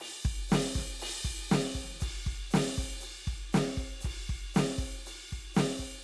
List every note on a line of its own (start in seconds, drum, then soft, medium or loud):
0.00 crash loud
0.25 kick medium
0.49 snare loud
0.49 hi-hat pedal medium
0.49 crash loud
0.74 kick medium
0.74 snare soft
0.74 hi-hat pedal soft
0.99 hi-hat pedal medium
0.99 crash loud
1.24 kick medium
1.24 crash soft
1.49 snare loud
1.49 hi-hat pedal medium
1.49 crash medium
1.75 kick medium
1.75 crash soft
1.84 snare soft
1.90 snare soft
1.94 snare soft
2.00 kick medium
2.00 hi-hat pedal medium
2.00 crash medium
2.21 hi-hat pedal soft
2.26 kick medium
2.26 crash soft
2.51 snare loud
2.51 hi-hat pedal medium
2.51 crash loud
2.74 kick medium
2.74 hi-hat pedal soft
2.74 crash soft
2.82 snare soft
2.86 snare soft
2.93 snare soft
3.00 hi-hat pedal medium
3.00 crash medium
3.23 hi-hat pedal soft
3.27 kick medium
3.27 crash soft
3.53 snare loud
3.53 hi-hat pedal medium
3.53 crash medium
3.77 kick medium
3.77 crash soft
4.01 kick medium
4.01 hi-hat pedal medium
4.05 crash medium
4.29 kick medium
4.29 crash soft
4.54 snare loud
4.54 hi-hat pedal medium
4.54 crash medium
4.78 kick medium
4.82 crash soft
5.06 hi-hat pedal medium
5.06 crash medium
5.31 kick medium
5.31 crash soft
5.54 snare loud
5.54 hi-hat pedal medium
5.54 crash loud
5.79 kick soft
5.79 crash soft